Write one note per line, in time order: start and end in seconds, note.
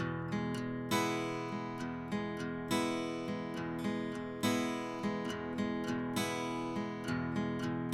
0.00 0.55 E2
0.00 2.44 B2
0.33 0.92 G#3
0.55 1.79 E2
0.92 1.52 G#3
0.92 2.70 B3
0.92 2.70 E4
1.54 2.10 G#3
1.81 2.38 E2
2.12 2.72 G#3
2.38 3.55 E2
2.71 3.28 G#3
2.71 4.45 B3
2.71 4.42 E4
3.29 3.83 G#3
3.55 4.13 E2
3.85 4.44 G#3
4.13 5.25 E2
4.43 5.01 G#3
4.43 6.18 B3
4.43 6.15 E4
5.04 5.55 G#3
5.26 5.85 E2
5.59 6.17 G#3
5.85 7.07 E2
6.17 6.77 G#3
6.17 7.92 B3
6.17 7.92 E4
6.77 7.34 G#3
7.09 7.60 E2
7.37 7.93 G#3
7.60 7.93 E2
7.93 7.93 E4